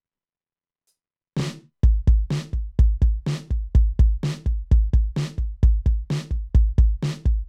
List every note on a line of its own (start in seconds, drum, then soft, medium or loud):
0.87 hi-hat pedal soft
1.37 snare loud
1.40 snare loud
1.83 kick loud
2.07 kick loud
2.30 snare loud
2.46 snare soft
2.53 kick medium
2.79 kick loud
3.02 kick loud
3.26 snare loud
3.34 snare soft
3.43 snare soft
3.50 kick medium
3.75 kick loud
3.99 kick loud
4.23 snare loud
4.39 snare soft
4.46 kick medium
4.71 kick loud
4.93 kick loud
5.16 snare loud
5.38 kick medium
5.63 kick loud
5.86 kick loud
6.10 snare loud
6.26 snare soft
6.31 kick medium
6.55 kick loud
6.78 kick loud
7.03 snare loud
7.18 snare soft
7.25 kick loud